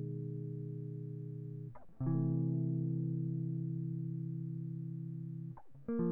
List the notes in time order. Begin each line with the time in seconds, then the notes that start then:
2.02 C3
2.07 E3
5.89 A#3
6.00 F3